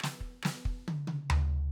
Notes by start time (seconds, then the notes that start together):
0.01 cross-stick, snare
0.20 kick
0.43 cross-stick, snare
0.65 kick
0.88 high tom
1.07 high tom
1.30 floor tom